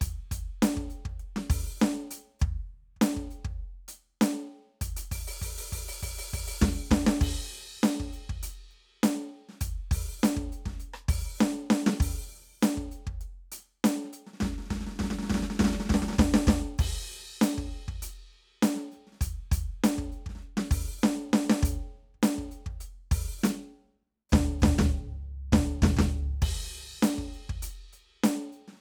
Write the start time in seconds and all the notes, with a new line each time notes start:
0.01 closed hi-hat, kick
0.31 closed hi-hat, kick
0.62 closed hi-hat, snare
0.77 kick
0.90 closed hi-hat
1.05 kick, snare
1.09 ride
1.20 closed hi-hat
1.36 snare
1.50 open hi-hat, kick
1.79 snare, hi-hat pedal
2.11 closed hi-hat
2.39 kick, hi-hat pedal
2.96 kick
3.01 closed hi-hat, snare
3.17 kick
3.31 closed hi-hat
3.45 kick, crash
3.88 closed hi-hat
4.21 closed hi-hat, snare
4.81 closed hi-hat, kick
4.96 closed hi-hat
5.11 open hi-hat, kick
5.27 open hi-hat
5.42 open hi-hat, kick
5.58 open hi-hat
5.72 open hi-hat, kick
5.88 open hi-hat
6.03 open hi-hat, kick
6.18 open hi-hat
6.33 open hi-hat, kick
6.47 open hi-hat
6.62 kick, snare
6.91 kick, snare
7.07 snare
7.21 kick, hi-hat pedal, crash
7.77 kick
7.83 closed hi-hat, snare
8.00 kick
8.13 closed hi-hat
8.29 kick
8.43 closed hi-hat
8.71 closed hi-hat
9.03 closed hi-hat, snare
9.21 snare
9.49 snare
9.52 snare
9.61 closed hi-hat, kick
9.91 open hi-hat, kick
10.22 closed hi-hat, snare, hi-hat pedal
10.37 kick
10.52 closed hi-hat
10.65 kick, snare
10.70 snare
10.73 snare
10.78 closed hi-hat, snare
10.81 snare
10.94 cross-stick
11.09 open hi-hat, kick
11.38 snare, hi-hat pedal
11.70 snare
11.86 snare
12.00 open hi-hat, kick
12.61 closed hi-hat, snare, hi-hat pedal
12.77 kick
12.91 closed hi-hat
13.07 kick, crash
13.21 closed hi-hat
13.52 closed hi-hat
13.84 closed hi-hat, snare
14.04 snare
14.13 closed hi-hat
14.27 snare
14.33 snare
14.37 snare, hi-hat pedal
14.40 kick, snare
14.45 snare
14.52 snare
14.58 snare
14.62 snare
14.66 snare
14.70 kick, snare
14.75 snare
14.79 snare
14.87 snare
14.91 snare
14.96 snare
14.99 kick, snare
15.04 snare
15.07 snare
15.10 snare
15.19 snare
15.23 snare
15.27 snare
15.30 kick, snare
15.34 snare
15.38 snare
15.42 snare
15.50 snare
15.55 snare
15.59 kick, snare
15.64 snare
15.68 snare
15.72 snare
15.80 snare
15.85 snare
15.89 kick, snare
15.94 snare
16.02 snare
16.08 snare
16.13 snare
16.18 kick, snare
16.34 snare
16.47 kick, snare
16.78 kick, hi-hat pedal, crash
17.11 closed hi-hat
17.41 closed hi-hat, kick, snare
17.58 kick
17.71 closed hi-hat
17.88 kick, crash
17.92 ride
18.02 closed hi-hat
18.33 closed hi-hat
18.62 closed hi-hat, snare
18.76 snare
18.91 closed hi-hat, snare
18.96 kick
19.07 snare
19.12 snare
19.14 snare
19.21 closed hi-hat, kick
19.52 closed hi-hat, kick
19.84 closed hi-hat, snare
19.98 kick
20.12 closed hi-hat
20.26 kick, snare
20.31 ride
20.35 snare
20.39 snare, closed hi-hat
20.57 snare
20.71 open hi-hat, kick
21.02 snare, hi-hat pedal
21.30 kick, snare
21.50 snare
21.63 closed hi-hat, kick
22.14 kick
22.22 closed hi-hat, snare, hi-hat pedal
22.38 kick
22.51 closed hi-hat
22.66 kick
22.71 ride
22.80 closed hi-hat
23.11 open hi-hat, kick
23.41 closed hi-hat, snare, hi-hat pedal
24.29 kick, snare, floor tom, hi-hat pedal
24.60 kick, snare, floor tom, hi-hat pedal
24.78 kick, snare, floor tom
24.87 hi-hat pedal
25.52 kick, snare, floor tom
25.82 kick, snare, floor tom
25.97 kick, snare, floor tom
26.42 kick, crash
27.03 closed hi-hat, snare
27.18 kick
27.33 closed hi-hat
27.49 kick, crash
27.62 closed hi-hat
27.93 closed hi-hat
28.24 closed hi-hat, snare
28.52 closed hi-hat
28.68 snare
28.73 snare
28.77 snare